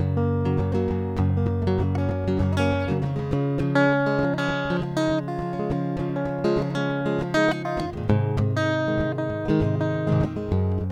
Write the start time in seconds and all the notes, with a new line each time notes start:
0.00 F#2 C#3 F#3
0.18 F#2 A#3
0.47 C#3 F#3
0.59 F#2 C#3 F#3
0.73 F#3 A#3
0.78 C#3
0.90 F#2 C#3
1.18 F#2 C#3 F#3
1.38 A#3
1.47 F#2 C#3
1.69 C#3 F#3
1.80 F#2 C#3 G3
1.96 A#3 C#4 F#4
2.10 F#2 D3
2.29 C#3 F#3
2.39 F#2 C#3 F#3 A#3
2.58 A#3 C#4
2.73 F#2 C#3 A#3
2.82 C#4
2.90 F#2 C#3 F#3 A#3
3.02 F2 C#3 G#3
3.18 C#3 G#3
3.33 C#3
3.60 C#3 F3
3.76 G#3 C#4
3.88 F3
3.94 G#3
4.08 G#3
4.20 C#3 F3 G#3
4.39 G#3 C#4
4.50 C#3 E3
4.71 F3
4.81 C#3 F3
4.85 G#3
4.98 G#3 D#4
5.09 C#3 F3
5.29 C#4 F4
5.40 C#3 F3
5.54 C#4
5.61 G#3
5.71 C#3 F3 G#3
5.98 C#3 F3
6.17 C#4
6.27 C#3 F3
6.45 F3 G#3
6.58 C#3 F3 G#3
6.76 G#3 C#4
6.91 F3
7.08 F3
7.20 C#3 F3 G#3
7.35 G#3 D#4
7.46 D#4
7.50 G#3 D#4
7.66 G#3 D#4 F4
7.78 C#3 D#3 G#3
7.95 D#3 G#3
8.00 G#2
8.06 G#3
8.10 G#2 C3
8.38 G#2 C3
8.58 G#3 D#4
8.89 D#3 G#3
8.99 G#2 C3 D#3
9.20 D#4
9.31 G#2 C3
9.47 D#3 G#3
9.58 G#2 G#3
9.62 C3 D#3
9.82 D#4
9.96 C3
10.09 C3 D#3 G#3
10.13 G#2
10.23 F2 A#2 D#3 G#3 C4
10.38 D#3 G#3
10.53 F#2
10.80 F#2